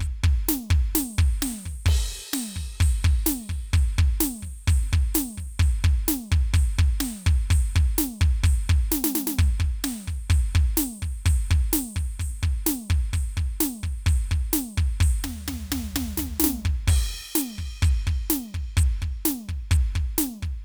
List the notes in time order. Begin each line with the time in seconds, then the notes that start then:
0.01 closed hi-hat, kick
0.24 kick
0.49 closed hi-hat, snare
0.63 snare
0.71 kick
0.96 open hi-hat, snare
1.08 snare
1.19 kick
1.43 open hi-hat, snare
1.51 snare
1.66 kick
1.86 kick, crash
2.34 open hi-hat, snare
2.56 kick
2.81 open hi-hat, kick
3.05 kick
3.27 open hi-hat, snare
3.50 kick
3.74 open hi-hat, kick
3.99 kick
4.21 open hi-hat, snare
4.43 kick
4.68 open hi-hat, kick
4.83 snare
4.93 kick
5.15 open hi-hat, snare
5.38 kick
5.60 open hi-hat, kick
5.84 kick
6.08 open hi-hat, snare
6.32 kick
6.54 open hi-hat, kick
6.79 kick
7.01 open hi-hat, snare
7.27 kick
7.51 open hi-hat, kick
7.76 kick
7.98 open hi-hat, snare
8.21 kick
8.44 open hi-hat, kick
8.62 snare
8.70 kick
8.92 snare
9.04 snare
9.16 snare
9.27 snare
9.39 open hi-hat, kick
9.60 kick
9.84 open hi-hat, snare
10.00 snare
10.08 kick
10.30 open hi-hat, kick
10.55 kick
10.78 open hi-hat, snare
11.03 kick
11.26 open hi-hat, kick
11.51 kick
11.73 open hi-hat, snare
11.96 kick
12.20 open hi-hat, kick
12.30 snare
12.43 kick
12.67 open hi-hat, snare
12.90 kick
13.14 open hi-hat, kick
13.38 kick
13.56 kick
13.61 open hi-hat, snare
13.84 kick
14.07 open hi-hat, kick
14.32 kick
14.53 open hi-hat, snare
14.78 kick
15.01 open hi-hat, kick
15.24 kick, snare, floor tom
15.48 snare, floor tom
15.72 snare, floor tom
15.96 snare, floor tom
16.18 snare, floor tom
16.40 snare, hi-hat pedal
16.44 snare
16.65 kick
16.88 open hi-hat, kick, crash
17.31 hi-hat pedal
17.36 closed hi-hat, snare
17.59 kick, closed hi-hat
17.83 closed hi-hat, kick
18.06 kick, snare, closed hi-hat
18.30 closed hi-hat, snare
18.44 snare
18.55 kick, closed hi-hat
18.77 closed hi-hat, kick
19.02 kick, closed hi-hat
19.26 closed hi-hat, snare
19.49 kick, closed hi-hat
19.71 closed hi-hat, kick
19.92 snare, closed hi-hat
19.96 kick
20.18 closed hi-hat, snare
20.27 snare
20.35 snare
20.43 kick, closed hi-hat